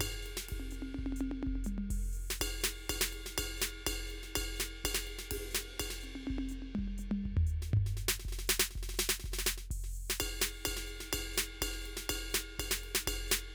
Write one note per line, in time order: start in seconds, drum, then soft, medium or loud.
0.01 kick soft
0.01 ride bell loud
0.07 kick soft
0.12 snare soft
0.23 hi-hat pedal medium
0.23 ride medium
0.38 snare medium
0.49 kick soft
0.49 ride medium
0.58 kick soft
0.58 high tom medium
0.71 hi-hat pedal medium
0.71 high tom medium
0.83 high tom medium
0.95 high tom medium
0.99 kick soft
1.06 kick soft
1.06 high tom medium
1.13 hi-hat pedal medium
1.13 high tom medium
1.21 high tom loud
1.32 high tom loud
1.43 high tom loud
1.47 kick soft
1.54 kick soft
1.54 high tom medium
1.65 hi-hat pedal medium
1.65 mid tom medium
1.79 mid tom medium
1.91 kick soft
1.91 crash medium
1.98 kick soft
2.14 hi-hat pedal medium
2.31 snare medium
2.42 kick soft
2.42 ride bell loud
2.62 snare loud
2.62 hi-hat pedal medium
2.84 hi-hat pedal soft
2.90 kick soft
2.90 ride bell loud
2.97 kick soft
3.02 snare loud
3.10 hi-hat pedal medium
3.10 ride medium
3.27 snare medium
3.39 kick soft
3.39 ride bell loud
3.46 kick soft
3.58 hi-hat pedal medium
3.62 snare loud
3.87 kick soft
3.87 ride bell loud
4.08 hi-hat pedal medium
4.08 ride soft
4.24 snare soft
4.36 kick soft
4.36 ride bell loud
4.43 kick soft
4.57 snare medium
4.57 hi-hat pedal medium
4.85 kick soft
4.85 ride bell loud
4.95 snare medium
5.04 hi-hat pedal medium
5.04 ride soft
5.19 snare medium
5.32 kick soft
5.32 ride loud
5.38 kick soft
5.52 snare loud
5.52 hi-hat pedal medium
5.80 kick soft
5.80 ride bell loud
5.87 kick soft
5.91 snare medium
6.01 hi-hat pedal medium
6.01 high tom soft
6.16 high tom medium
6.28 kick soft
6.28 high tom loud
6.37 kick soft
6.37 high tom loud
6.49 hi-hat pedal medium
6.49 high tom soft
6.63 high tom medium
6.76 kick soft
6.76 mid tom loud
6.86 kick soft
6.86 mid tom soft
6.99 hi-hat pedal medium
6.99 mid tom soft
7.12 mid tom loud
7.25 kick soft
7.25 floor tom soft
7.33 kick soft
7.38 floor tom loud
7.47 hi-hat pedal medium
7.63 snare soft
7.74 kick soft
7.74 floor tom loud
7.84 kick soft
7.84 snare soft
7.97 snare soft
7.97 hi-hat pedal medium
8.09 snare loud
8.20 snare soft
8.26 kick soft
8.26 snare soft
8.32 kick soft
8.32 snare soft
8.39 snare medium
8.48 snare loud
8.48 hi-hat pedal medium
8.60 snare loud
8.71 snare soft
8.76 kick soft
8.76 snare soft
8.83 snare soft
8.90 snare medium
8.95 snare soft
8.95 hi-hat pedal medium
9.00 snare loud
9.10 snare loud
9.20 snare soft
9.25 kick soft
9.25 snare soft
9.31 kick soft
9.31 snare soft
9.31 snare medium
9.39 snare medium
9.46 snare loud
9.46 hi-hat pedal medium
9.58 snare soft
9.71 kick soft
9.71 crash medium
9.77 kick soft
9.83 kick soft
9.83 snare soft
9.94 hi-hat pedal medium
10.10 snare medium
10.21 kick soft
10.21 ride bell loud
10.28 kick soft
10.41 snare loud
10.41 hi-hat pedal medium
10.66 kick soft
10.66 ride bell loud
10.73 kick soft
10.73 snare medium
10.87 hi-hat pedal medium
10.87 ride soft
11.01 snare medium
11.14 kick soft
11.14 ride bell loud
11.21 kick soft
11.34 hi-hat pedal medium
11.38 snare loud
11.62 kick soft
11.62 ride bell loud
11.74 snare soft
11.82 hi-hat pedal medium
11.82 ride medium
11.97 snare medium
12.10 kick soft
12.10 ride bell loud
12.30 hi-hat pedal medium
12.35 snare loud
12.60 kick soft
12.60 ride bell loud
12.66 kick soft
12.72 snare loud
12.79 hi-hat pedal medium
12.84 ride soft
12.95 snare loud
13.08 kick soft
13.08 ride bell loud
13.15 kick soft
13.29 snare loud
13.29 hi-hat pedal medium